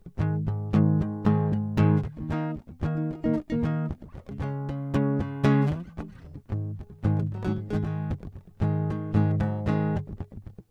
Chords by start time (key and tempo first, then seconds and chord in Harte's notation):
G# major, 114 BPM
0.00 G#:(1,5)
2.30 D#:(1,5)
4.41 C#:(1,5)
6.51 G#:(1,5)